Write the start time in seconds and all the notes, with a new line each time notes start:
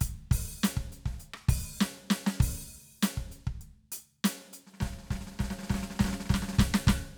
0.01 closed hi-hat, kick
0.31 open hi-hat, kick
0.62 closed hi-hat, snare, hi-hat pedal
0.77 kick
0.92 closed hi-hat
1.06 kick, snare
1.10 snare
1.13 snare
1.18 closed hi-hat, snare
1.21 snare
1.34 cross-stick
1.49 open hi-hat, kick
1.79 snare, hi-hat pedal
2.10 snare
2.27 snare
2.40 open hi-hat, kick
3.01 closed hi-hat, snare, hi-hat pedal
3.17 kick
3.32 closed hi-hat
3.47 kick, crash
3.61 closed hi-hat
3.92 closed hi-hat
4.24 closed hi-hat, snare
4.45 snare
4.53 closed hi-hat
4.67 snare
4.74 snare
4.77 snare, hi-hat pedal
4.80 kick, snare
4.85 snare
4.92 snare
4.98 snare
5.03 snare
5.06 snare
5.11 kick, snare
5.15 snare
5.20 snare
5.27 snare
5.31 snare
5.36 snare
5.39 kick, snare
5.44 snare
5.47 snare
5.50 snare
5.59 snare
5.63 snare
5.67 snare
5.70 kick, snare
5.74 snare
5.78 snare
5.83 snare
5.90 snare
5.95 snare
6.00 kick, snare
6.04 snare
6.08 snare
6.13 snare
6.20 snare
6.25 snare
6.30 kick, snare
6.34 snare
6.42 snare
6.49 snare
6.53 snare
6.59 kick, snare
6.74 snare
6.87 kick, snare